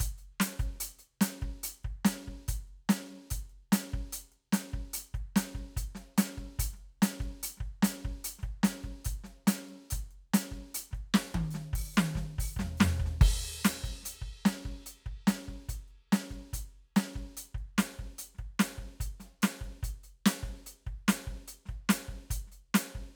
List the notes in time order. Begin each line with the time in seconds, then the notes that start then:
0.00 closed hi-hat, kick
0.18 closed hi-hat
0.40 closed hi-hat, snare
0.59 closed hi-hat, kick
0.74 snare
0.80 closed hi-hat
0.99 closed hi-hat
1.21 closed hi-hat, snare
1.42 kick, closed hi-hat
1.63 closed hi-hat
1.84 kick, closed hi-hat
2.05 closed hi-hat, snare
2.28 kick
2.48 closed hi-hat, kick
2.67 closed hi-hat
2.89 closed hi-hat, snare
3.08 closed hi-hat
3.31 closed hi-hat, kick
3.50 closed hi-hat
3.72 closed hi-hat, snare
3.92 kick, closed hi-hat
4.13 closed hi-hat
4.32 closed hi-hat
4.53 closed hi-hat, snare
4.72 kick, closed hi-hat
4.94 closed hi-hat, snare
5.14 kick, closed hi-hat
5.36 closed hi-hat, snare
5.55 kick, closed hi-hat
5.77 closed hi-hat, kick
5.95 snare, closed hi-hat
6.18 closed hi-hat, snare
6.38 kick, closed hi-hat
6.59 closed hi-hat, kick
6.73 snare, closed hi-hat
7.02 closed hi-hat, snare
7.20 kick, closed hi-hat
7.43 closed hi-hat
7.57 kick, snare
7.64 closed hi-hat
7.83 closed hi-hat, snare
8.04 kick, closed hi-hat
8.24 closed hi-hat
8.39 snare
8.43 kick, closed hi-hat
8.63 closed hi-hat, snare
8.83 kick, closed hi-hat
9.05 closed hi-hat, kick
9.14 kick
9.24 snare, closed hi-hat
9.47 closed hi-hat, snare
9.69 closed hi-hat
9.91 closed hi-hat, kick, snare
10.11 closed hi-hat
10.34 closed hi-hat, snare
10.52 kick, closed hi-hat
10.75 closed hi-hat
10.91 kick, snare, closed hi-hat
11.14 snare
11.34 kick, high tom
11.51 snare, hi-hat pedal
11.73 kick, open hi-hat
11.94 snare, hi-hat pedal, high tom
12.15 kick, snare
12.38 open hi-hat, kick
12.56 kick, snare, floor tom
12.77 snare, floor tom, hi-hat pedal
13.00 kick
13.06 snare
13.21 kick, hi-hat pedal, crash
13.65 closed hi-hat, snare
13.84 closed hi-hat, kick
14.03 closed hi-hat, snare
14.22 kick
14.45 closed hi-hat, snare
14.65 kick, closed hi-hat
14.73 kick
14.86 closed hi-hat
15.06 kick, closed hi-hat
15.27 closed hi-hat, snare
15.48 kick
15.69 closed hi-hat, kick
15.77 kick
15.88 closed hi-hat
16.12 closed hi-hat, snare
16.31 kick, closed hi-hat
16.53 closed hi-hat, kick
16.70 closed hi-hat
16.96 closed hi-hat, snare
17.16 kick
17.37 closed hi-hat, snare
17.55 kick, closed hi-hat
17.78 closed hi-hat, snare
17.99 kick, closed hi-hat
18.18 closed hi-hat
18.35 snare, closed hi-hat
18.39 kick
18.59 closed hi-hat, snare
18.78 kick, closed hi-hat
19.00 closed hi-hat, kick
19.20 closed hi-hat, snare
19.42 closed hi-hat, snare
19.61 kick, closed hi-hat
19.83 closed hi-hat, kick
20.04 closed hi-hat
20.26 closed hi-hat, snare
20.43 kick, closed hi-hat
20.66 closed hi-hat
20.87 kick, closed hi-hat
21.08 closed hi-hat, snare
21.27 kick, closed hi-hat
21.48 closed hi-hat
21.66 kick, snare, closed hi-hat
21.89 closed hi-hat, snare
22.08 kick, closed hi-hat
22.31 closed hi-hat, kick
22.47 snare
22.52 closed hi-hat
22.74 closed hi-hat, snare
22.95 kick